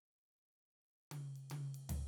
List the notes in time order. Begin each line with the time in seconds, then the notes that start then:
1.11 high tom, ride
1.36 ride
1.50 high tom, ride
1.74 ride
1.89 floor tom, ride